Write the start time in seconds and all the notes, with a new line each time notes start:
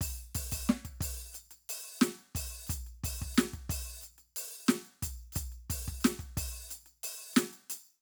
0.01 kick, percussion
0.35 kick, percussion
0.52 kick, percussion
0.67 snare, percussion
0.85 kick, percussion
1.01 kick, percussion
1.34 percussion
1.51 percussion
1.69 percussion
1.99 snare, percussion
2.02 percussion
2.19 percussion
2.35 kick, percussion
2.67 kick, percussion
2.70 percussion
2.87 percussion
3.04 kick, percussion
3.22 kick
3.35 snare, percussion
3.38 percussion
3.53 kick, percussion
3.70 kick, percussion
4.02 percussion
4.03 percussion
4.18 percussion
4.36 percussion
4.67 snare, percussion
4.69 percussion
4.85 percussion
5.03 kick, percussion
5.33 percussion
5.36 kick, percussion
5.52 percussion
5.70 kick, percussion
5.88 kick
6.01 snare, percussion
6.05 percussion
6.19 kick, percussion
6.37 kick, percussion
6.69 percussion
6.71 percussion
6.86 percussion
7.03 percussion
7.34 snare, percussion
7.37 percussion
7.53 percussion
7.70 percussion